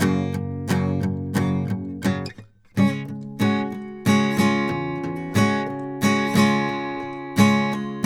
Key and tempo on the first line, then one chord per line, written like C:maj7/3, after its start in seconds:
C# major, 90 BPM
0.06 F#:maj
2.72 C#:maj(#9)/b3